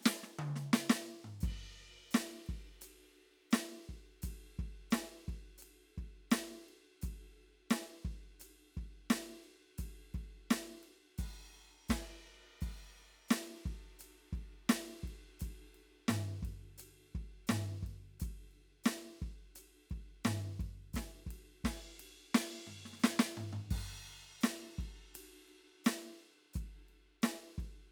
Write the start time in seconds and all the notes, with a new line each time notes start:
0.01 snare, hi-hat pedal
0.06 snare
0.23 snare
0.39 mid tom
0.56 snare
0.73 snare, hi-hat pedal
0.90 snare
1.24 floor tom
1.40 kick, hi-hat pedal, crash
2.11 snare, hi-hat pedal
2.15 ride
2.46 kick, ride
2.81 hi-hat pedal, ride
3.51 snare, hi-hat pedal, ride
3.89 kick
4.22 kick, hi-hat pedal, ride
4.59 kick, ride
4.91 snare, hi-hat pedal, ride
5.28 kick, ride
5.58 hi-hat pedal
5.62 ride
5.98 kick, ride
6.31 snare, hi-hat pedal, ride
6.69 ride
7.01 kick, hi-hat pedal, ride
7.70 snare, hi-hat pedal, ride
8.05 kick
8.40 hi-hat pedal, ride
8.74 kick, ride
9.10 snare, hi-hat pedal, ride
9.44 ride
9.78 kick, hi-hat pedal, ride
10.14 kick, ride
10.50 snare, hi-hat pedal, ride
10.83 ride
11.18 kick, hi-hat pedal, crash
11.53 ride
11.89 kick, snare, hi-hat pedal, crash
12.27 ride
12.61 kick, hi-hat pedal, crash
13.28 snare, hi-hat pedal, ride
13.66 kick, ride
13.99 hi-hat pedal, ride
14.33 kick, ride
14.69 snare, hi-hat pedal, ride
15.03 kick
15.08 ride
15.39 kick, hi-hat pedal, ride
15.74 ride
16.08 snare, floor tom, hi-hat pedal
16.43 kick, ride
16.78 hi-hat pedal, ride
17.13 kick, ride
17.47 snare, floor tom, hi-hat pedal
17.83 kick, ride
18.20 kick, hi-hat pedal, ride
18.51 ride
18.84 snare, hi-hat pedal, ride
19.22 kick
19.55 hi-hat pedal, ride
19.90 kick, ride
20.24 snare, floor tom, hi-hat pedal
20.59 kick, ride
20.93 kick, snare, hi-hat pedal, ride
21.26 kick
21.31 ride
21.64 kick, snare, ride
22.00 ride
22.34 snare, hi-hat pedal, ride
22.67 floor tom
22.85 snare
22.93 snare
22.99 snare, hi-hat pedal
23.04 snare
23.19 snare
23.37 floor tom
23.53 floor tom
23.71 kick, crash
24.04 ride
24.41 snare, hi-hat pedal, ride
24.78 kick, ride
25.14 hi-hat pedal, ride
25.48 ride
25.84 snare, hi-hat pedal, ride
26.53 kick, hi-hat pedal, ride
26.89 ride
27.22 snare, hi-hat pedal, ride
27.58 kick, ride